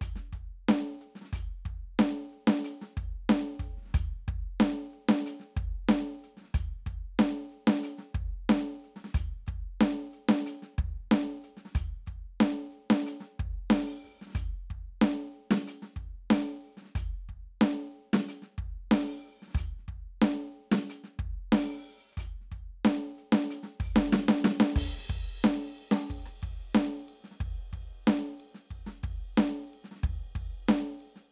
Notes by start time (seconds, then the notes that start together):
0.01 closed hi-hat, kick
0.15 snare
0.32 kick, closed hi-hat
0.68 closed hi-hat, snare
1.01 closed hi-hat
1.15 snare
1.21 snare
1.25 snare
1.33 closed hi-hat, kick
1.65 kick, closed hi-hat
1.99 closed hi-hat, snare
2.33 closed hi-hat
2.47 snare
2.64 closed hi-hat
2.81 snare
2.97 closed hi-hat, kick
3.29 closed hi-hat, snare
3.59 closed hi-hat, kick
3.77 snare
3.82 snare
3.85 snare
3.88 snare
3.89 snare
3.94 closed hi-hat, kick
4.28 kick, closed hi-hat
4.60 closed hi-hat, snare
4.67 snare
4.93 closed hi-hat
5.09 snare
5.26 closed hi-hat
5.40 snare
5.57 closed hi-hat, kick
5.89 closed hi-hat, snare
6.24 closed hi-hat
6.37 snare
6.41 snare
6.44 snare
6.49 snare
6.54 closed hi-hat, kick
6.86 closed hi-hat, kick
7.19 closed hi-hat, snare
7.51 closed hi-hat
7.67 snare
7.74 snare
7.83 closed hi-hat
7.98 snare
8.14 closed hi-hat, kick
8.49 closed hi-hat, snare
8.57 snare
8.84 closed hi-hat
8.96 snare
9.04 snare
9.08 snare
9.14 closed hi-hat, kick
9.46 closed hi-hat, kick
9.81 closed hi-hat, snare
10.13 closed hi-hat
10.29 snare
10.46 closed hi-hat
10.62 snare
10.78 kick, closed hi-hat
11.11 closed hi-hat, snare
11.44 closed hi-hat
11.57 snare
11.65 snare
11.68 snare
11.72 closed hi-hat, kick, snare
12.06 closed hi-hat, kick
12.40 closed hi-hat, snare
12.72 closed hi-hat
12.90 snare
13.06 closed hi-hat
13.20 snare
13.38 kick, closed hi-hat
13.70 open hi-hat, snare
13.77 snare
14.04 open hi-hat, kick
14.21 snare
14.27 snare
14.30 snare, hi-hat pedal
14.32 closed hi-hat, kick, snare
14.70 kick, closed hi-hat
15.01 closed hi-hat, snare
15.16 snare
15.33 closed hi-hat
15.51 snare
15.67 closed hi-hat
15.82 snare
15.96 closed hi-hat, kick
16.30 open hi-hat, snare
16.38 snare
16.64 open hi-hat
16.77 snare
16.82 snare
16.85 snare
16.95 closed hi-hat, kick
17.29 kick, closed hi-hat
17.61 closed hi-hat, snare
17.95 closed hi-hat
18.13 snare
18.28 closed hi-hat
18.42 snare
18.58 kick, closed hi-hat
18.91 open hi-hat, snare
19.27 open hi-hat
19.42 snare
19.48 snare, hi-hat pedal
19.50 snare
19.53 kick, snare
19.55 closed hi-hat, snare
19.78 snare
19.88 kick, closed hi-hat
20.22 closed hi-hat, snare
20.71 snare
20.90 closed hi-hat
21.04 snare
21.19 kick, closed hi-hat
21.52 open hi-hat, snare
21.86 open hi-hat
22.12 hi-hat pedal
22.17 closed hi-hat, kick
22.41 snare
22.51 closed hi-hat, kick
22.85 closed hi-hat, snare
23.18 closed hi-hat
23.32 snare
23.50 closed hi-hat
23.63 snare
23.80 open hi-hat, kick
23.96 snare
24.09 snare, hi-hat pedal
24.28 snare
24.39 hi-hat pedal
24.44 snare
24.60 snare
24.76 kick, crash
24.98 snare
25.09 kick, ride
25.44 snare, ride
25.78 ride
25.91 snare
26.10 kick, ride
26.26 cross-stick
26.42 kick, ride
26.75 snare, ride
27.08 ride
27.24 snare
27.31 snare
27.40 kick, ride
27.73 kick, ride
28.07 snare, ride
28.17 snare
28.22 snare
28.40 ride
28.54 snare
28.70 kick, ride
28.86 snare
29.03 kick, ride
29.37 snare, ride
29.73 ride
29.84 snare
29.91 snare
29.96 snare
30.03 kick, ride
30.35 kick, ride
30.68 snare, ride
31.00 ride
31.16 snare